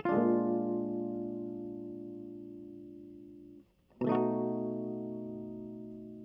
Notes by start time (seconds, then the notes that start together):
0.00 G#4
0.06 D4 F4
0.12 D3 G#3
0.19 A#2
4.03 B2
4.07 D#3 A3 D#4
4.12 F#4 A4